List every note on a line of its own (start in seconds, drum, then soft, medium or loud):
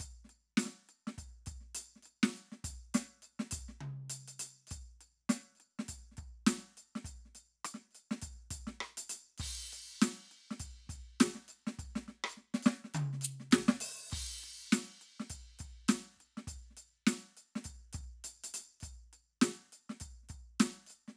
0.01 kick soft
0.01 percussion medium
0.25 snare soft
0.30 percussion soft
0.58 snare medium
0.58 percussion loud
0.64 snare soft
0.64 percussion medium
0.86 percussion soft
0.90 percussion soft
1.08 snare medium
1.19 kick soft
1.19 percussion medium
1.47 kick soft
1.47 snare soft
1.47 percussion medium
1.56 kick soft
1.62 snare soft
1.64 snare soft
1.76 percussion loud
1.97 snare soft
2.04 percussion soft
2.07 percussion soft
2.24 snare loud
2.37 percussion soft
2.53 snare soft
2.65 kick soft
2.65 percussion loud
2.71 kick soft
2.74 kick soft
2.95 snare loud
2.95 percussion loud
3.23 percussion medium
3.25 percussion soft
3.40 snare medium
3.52 kick soft
3.52 percussion loud
3.60 kick soft
3.63 kick soft
3.69 snare soft
3.82 mid tom medium
4.11 percussion loud
4.29 percussion medium
4.41 percussion loud
4.68 percussion medium
4.72 kick soft
4.72 percussion medium
4.78 kick soft
5.02 percussion medium
5.30 snare loud
5.30 percussion loud
5.56 percussion soft
5.61 percussion soft
5.80 snare medium
5.89 kick soft
5.89 percussion medium
6.12 snare soft
6.18 kick soft
6.18 percussion medium
6.48 snare loud
6.48 percussion loud
6.59 snare soft
6.78 percussion medium
6.96 snare medium
7.06 kick soft
7.06 percussion medium
7.26 snare soft
7.36 snare soft
7.36 percussion medium
7.66 cross-stick medium
7.66 percussion loud
7.75 snare soft
7.92 percussion soft
7.96 percussion soft
8.12 snare medium
8.23 kick soft
8.23 percussion medium
8.52 kick soft
8.52 percussion loud
8.61 kick soft
8.68 snare medium
8.82 high tom loud
8.98 percussion loud
9.11 percussion loud
9.39 kick medium
9.39 percussion medium
9.39 crash loud
9.47 kick soft
9.50 kick soft
9.74 percussion medium
10.03 snare loud
10.03 percussion loud
10.32 percussion soft
10.52 snare medium
10.61 kick soft
10.61 percussion medium
10.67 kick soft
10.88 kick soft
10.88 snare soft
10.88 percussion medium
10.96 kick soft
10.99 kick soft
11.21 snare loud
11.21 percussion loud
11.36 snare soft
11.49 percussion medium
11.51 percussion soft
11.68 snare medium
11.80 kick soft
11.80 percussion medium
11.86 kick soft
11.97 snare medium
12.09 snare soft
12.25 high tom loud
12.31 percussion medium
12.38 snare soft
12.55 snare medium
12.64 snare loud
12.64 percussion medium
12.85 snare soft
12.95 mid tom loud
12.95 percussion loud
13.14 snare soft
13.22 percussion loud
13.22 floor tom loud
13.41 snare soft
13.52 kick soft
13.52 snare loud
13.52 percussion loud
13.69 snare loud
13.81 percussion loud
14.11 kick medium
14.11 percussion medium
14.11 crash loud
14.21 kick soft
14.44 percussion soft
14.73 snare loud
14.73 percussion loud
15.02 percussion medium
15.21 snare medium
15.31 kick soft
15.31 percussion medium
15.60 kick soft
15.60 percussion medium
15.89 snare loud
15.89 percussion loud
16.15 kick soft
16.15 percussion soft
16.21 percussion soft
16.38 snare soft
16.48 kick soft
16.48 percussion medium
16.54 kick soft
16.57 kick soft
16.72 snare soft
16.77 snare soft
16.77 percussion medium
17.08 snare loud
17.08 percussion loud
17.38 percussion soft
17.57 snare medium
17.65 kick soft
17.65 percussion medium
17.94 kick soft
17.94 percussion medium
18.01 kick soft
18.05 kick soft
18.25 percussion loud
18.45 percussion loud
18.55 percussion loud
18.81 kick soft
18.81 percussion medium
18.84 percussion medium
19.14 percussion medium
19.43 snare loud
19.43 percussion loud
19.73 percussion soft
19.91 snare soft
20.01 kick soft
20.01 percussion medium
20.24 snare soft
20.30 kick soft
20.30 percussion medium
20.61 snare loud
20.61 percussion loud
20.72 snare soft
20.88 percussion medium
20.91 percussion soft
21.09 snare soft